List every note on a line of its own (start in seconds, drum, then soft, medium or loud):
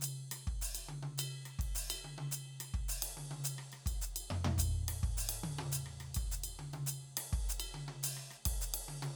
0.01 hi-hat pedal loud
0.01 ride bell medium
0.31 cross-stick medium
0.31 ride bell medium
0.47 kick soft
0.61 hi-hat pedal loud
0.75 ride bell medium
0.88 high tom medium
1.02 high tom medium
1.17 hi-hat pedal loud
1.17 ride bell loud
1.45 cross-stick soft
1.45 ride bell soft
1.59 kick soft
1.59 ride medium
1.75 hi-hat pedal loud
1.90 ride bell loud
2.04 high tom medium
2.18 high tom medium
2.31 hi-hat pedal loud
2.31 ride bell medium
2.60 cross-stick medium
2.60 ride bell medium
2.73 kick soft
2.88 hi-hat pedal loud
3.02 ride loud
3.17 high tom medium
3.31 high tom medium
3.44 hi-hat pedal loud
3.44 ride bell medium
3.58 cross-stick medium
3.72 cross-stick soft
3.72 ride bell soft
3.86 kick medium
3.86 ride bell medium
4.01 hi-hat pedal loud
4.16 ride bell medium
4.30 mid tom medium
4.44 mid tom loud
4.57 kick soft
4.57 hi-hat pedal loud
4.57 ride bell loud
4.88 cross-stick medium
4.88 ride loud
5.03 kick medium
5.17 hi-hat pedal loud
5.29 ride loud
5.43 high tom medium
5.58 high tom medium
5.72 hi-hat pedal loud
5.72 ride bell medium
5.86 cross-stick soft
6.00 cross-stick soft
6.00 ride bell soft
6.14 kick medium
6.14 ride bell medium
6.31 hi-hat pedal loud
6.43 ride bell medium
6.59 high tom medium
6.73 open hi-hat soft
6.73 high tom medium
6.73 ride bell soft
6.86 hi-hat pedal loud
6.86 ride bell medium
7.17 cross-stick medium
7.17 hi-hat pedal soft
7.17 ride loud
7.32 kick medium
7.49 hi-hat pedal loud
7.60 ride bell loud
7.74 high tom medium
7.88 high tom medium
8.03 hi-hat pedal loud
8.03 ride bell loud
8.17 cross-stick soft
8.30 cross-stick soft
8.30 ride soft
8.45 kick medium
8.45 ride loud
8.61 hi-hat pedal loud
8.74 ride loud
8.88 high tom medium
9.02 high tom medium
9.02 ride soft